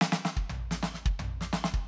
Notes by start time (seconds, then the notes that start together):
0.01 snare
0.12 snare
0.25 snare
0.37 kick
0.50 floor tom
0.71 snare
0.83 snare
0.94 snare
1.06 kick
1.19 floor tom, high tom
1.41 snare
1.53 snare
1.64 snare
1.74 kick